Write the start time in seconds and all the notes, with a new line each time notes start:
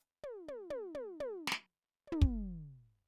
0.00 hi-hat pedal
0.23 high tom
0.48 high tom
0.70 high tom
0.94 high tom
1.20 closed hi-hat, high tom
1.47 snare
1.52 snare
2.07 high tom
2.11 floor tom
2.22 kick